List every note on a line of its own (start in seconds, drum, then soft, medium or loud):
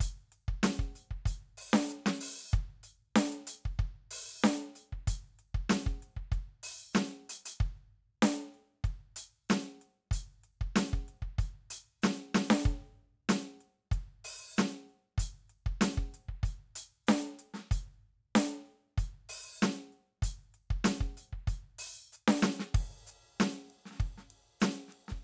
0.01 closed hi-hat loud
0.01 kick medium
0.33 closed hi-hat soft
0.49 kick medium
0.64 closed hi-hat loud
0.64 snare loud
0.80 kick medium
0.96 closed hi-hat medium
1.11 kick soft
1.26 closed hi-hat medium
1.26 kick medium
1.58 open hi-hat loud
1.74 snare loud
1.89 hi-hat pedal medium
2.07 snare loud
2.21 open hi-hat loud
2.53 kick loud
2.53 closed hi-hat soft
2.53 hi-hat pedal medium
2.84 closed hi-hat medium
3.16 closed hi-hat loud
3.16 snare loud
3.33 closed hi-hat medium
3.48 closed hi-hat loud
3.66 kick medium
3.80 kick medium
4.11 open hi-hat loud
4.43 closed hi-hat loud
4.43 snare loud
4.43 hi-hat pedal medium
4.76 closed hi-hat medium
4.93 kick soft
5.08 closed hi-hat loud
5.08 kick medium
5.39 closed hi-hat soft
5.55 kick medium
5.70 closed hi-hat loud
5.70 snare loud
5.87 kick medium
6.03 closed hi-hat soft
6.17 kick soft
6.32 kick medium
6.32 closed hi-hat soft
6.64 open hi-hat loud
6.94 snare loud
6.94 closed hi-hat soft
6.94 hi-hat pedal medium
7.12 closed hi-hat soft
7.30 closed hi-hat loud
7.46 closed hi-hat loud
7.61 kick medium
8.23 closed hi-hat loud
8.23 snare loud
8.55 closed hi-hat soft
8.85 kick medium
8.85 closed hi-hat soft
9.17 open hi-hat loud
9.50 closed hi-hat medium
9.50 snare loud
9.50 hi-hat pedal medium
9.82 closed hi-hat soft
10.12 closed hi-hat loud
10.12 kick medium
10.44 closed hi-hat soft
10.62 kick medium
10.76 closed hi-hat loud
10.76 snare loud
10.94 kick medium
11.09 closed hi-hat soft
11.23 kick soft
11.39 closed hi-hat medium
11.39 kick medium
11.71 open hi-hat loud
12.03 snare loud
12.03 hi-hat pedal medium
12.35 snare loud
12.51 snare loud
12.66 kick medium
13.30 closed hi-hat loud
13.30 snare loud
13.61 closed hi-hat soft
13.92 kick medium
13.92 closed hi-hat medium
14.25 open hi-hat loud
14.57 snare loud
14.57 closed hi-hat medium
14.57 hi-hat pedal medium
14.90 closed hi-hat soft
15.18 closed hi-hat loud
15.18 kick medium
15.50 closed hi-hat soft
15.67 kick medium
15.82 closed hi-hat loud
15.82 snare loud
15.98 kick medium
16.15 closed hi-hat medium
16.29 kick soft
16.44 closed hi-hat medium
16.44 kick medium
16.76 open hi-hat loud
17.08 closed hi-hat medium
17.08 snare loud
17.08 hi-hat pedal medium
17.39 closed hi-hat medium
17.54 snare medium
17.58 snare soft
17.67 snare soft
17.70 closed hi-hat medium
17.70 kick medium
17.70 snare soft
18.36 closed hi-hat loud
18.36 snare loud
18.67 closed hi-hat soft
18.98 closed hi-hat medium
18.98 kick medium
19.30 open hi-hat loud
19.62 snare loud
19.62 hi-hat pedal medium
19.93 closed hi-hat soft
20.23 closed hi-hat loud
20.23 kick medium
20.55 closed hi-hat soft
20.71 kick medium
20.85 closed hi-hat loud
20.85 snare loud
21.01 kick medium
21.18 closed hi-hat medium
21.33 kick soft
21.48 closed hi-hat medium
21.48 kick medium
21.79 open hi-hat loud
22.13 hi-hat pedal medium
22.13 open hi-hat soft
22.28 snare loud
22.43 snare loud
22.60 snare medium
22.75 kick loud
22.75 ride loud
23.07 hi-hat pedal medium
23.07 ride soft
23.41 snare loud
23.41 ride medium
23.71 ride soft
23.86 snare soft
23.92 snare soft
23.94 snare soft
23.98 kick medium
23.98 snare soft
23.98 ride soft
24.18 snare soft
24.31 ride medium
24.61 snare loud
24.61 hi-hat pedal medium
24.61 ride medium
24.89 snare soft
24.93 ride soft
25.09 kick soft
25.09 snare soft